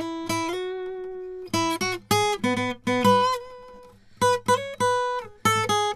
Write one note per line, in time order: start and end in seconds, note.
0.00 0.30 E4
0.30 0.54 E4
0.54 1.50 F#4
1.54 1.79 E4
1.81 2.01 F#4
2.11 2.38 G#4
2.44 2.56 B3
2.58 2.77 B3
2.87 3.02 B3
3.02 3.11 G#3
3.02 3.27 B4
4.22 4.42 B4
4.49 4.76 C#5
4.81 5.23 B4
5.46 5.67 A4
5.70 5.94 G#4